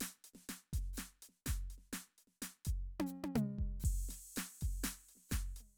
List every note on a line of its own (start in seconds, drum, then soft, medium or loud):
0.01 open hi-hat medium
0.01 snare soft
0.25 closed hi-hat soft
0.34 snare soft
0.49 closed hi-hat medium
0.49 snare soft
0.74 closed hi-hat medium
0.74 kick soft
0.79 snare soft
0.94 hi-hat pedal soft
0.98 closed hi-hat medium
0.98 snare soft
1.23 closed hi-hat soft
1.29 snare soft
1.47 open hi-hat medium
1.47 kick soft
1.47 snare soft
1.47 hi-hat pedal soft
1.71 closed hi-hat soft
1.78 snare soft
1.93 closed hi-hat medium
1.93 snare soft
2.19 closed hi-hat soft
2.28 snare soft
2.42 closed hi-hat medium
2.42 snare soft
2.66 closed hi-hat medium
2.66 kick soft
3.00 high tom medium
3.07 hi-hat pedal medium
3.24 high tom medium
3.36 hi-hat pedal medium
3.36 mid tom loud
3.59 kick soft
3.80 hi-hat pedal medium
3.85 kick soft
3.85 crash medium
3.91 kick soft
3.94 kick soft
4.09 closed hi-hat medium
4.09 snare soft
4.37 open hi-hat medium
4.37 snare soft
4.62 closed hi-hat soft
4.62 kick soft
4.69 snare soft
4.84 open hi-hat medium
4.84 snare soft
5.09 closed hi-hat soft
5.16 snare soft
5.17 snare soft
5.29 closed hi-hat medium
5.29 kick soft
5.29 snare soft
5.29 hi-hat pedal soft
5.57 closed hi-hat soft
5.61 mid tom soft